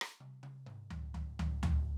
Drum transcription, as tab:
SD |r---------------|
T1 |-go-------------|
T2 |---o------------|
FT |----oooo--------|